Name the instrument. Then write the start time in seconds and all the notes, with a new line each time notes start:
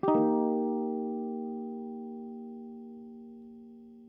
electric guitar
0.03 G4
0.08 D#4
0.15 A#3